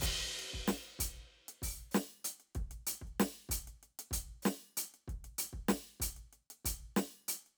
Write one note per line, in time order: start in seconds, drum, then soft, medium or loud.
0.01 kick medium
0.01 hi-hat pedal loud
0.01 ride loud
0.39 closed hi-hat soft
0.53 kick soft
0.68 snare loud
0.99 closed hi-hat loud
0.99 kick medium
1.16 closed hi-hat soft
1.35 closed hi-hat soft
1.48 closed hi-hat medium
1.62 open hi-hat loud
1.62 kick soft
1.91 snare loud
1.91 hi-hat pedal soft
2.24 closed hi-hat loud
2.40 closed hi-hat soft
2.55 kick medium
2.55 closed hi-hat soft
2.71 closed hi-hat soft
2.87 closed hi-hat loud
3.01 kick soft
3.07 closed hi-hat soft
3.20 snare loud
3.49 closed hi-hat loud
3.49 kick medium
3.67 closed hi-hat soft
3.83 closed hi-hat soft
3.99 closed hi-hat medium
4.11 closed hi-hat loud
4.11 kick medium
4.42 snare loud
4.42 hi-hat pedal medium
4.77 closed hi-hat loud
4.94 closed hi-hat soft
5.08 kick soft
5.08 closed hi-hat soft
5.24 closed hi-hat soft
5.38 closed hi-hat loud
5.53 kick soft
5.69 snare loud
6.00 closed hi-hat loud
6.00 kick soft
6.16 closed hi-hat soft
6.33 closed hi-hat soft
6.50 closed hi-hat medium
6.65 closed hi-hat loud
6.65 kick medium
6.96 snare loud
7.28 closed hi-hat loud
7.46 closed hi-hat soft